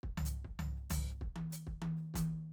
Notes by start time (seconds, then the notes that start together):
0.03 kick
0.17 floor tom
0.25 hi-hat pedal
0.45 kick
0.59 floor tom
0.76 snare
0.90 kick, floor tom, hi-hat pedal
1.11 snare
1.21 kick
1.36 high tom
1.50 snare, hi-hat pedal
1.67 kick
1.82 high tom
1.97 snare
2.14 kick, hi-hat pedal, high tom